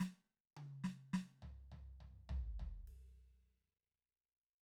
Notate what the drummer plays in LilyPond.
\new DrumStaff \drummode { \time 4/4 \tempo 4 = 104 <sn hhp>4 tommh8 sn8 sn8 tomfh8 tomfh8 tomfh8 | tomfh8 tomfh8 cymc4 r4 r4 | }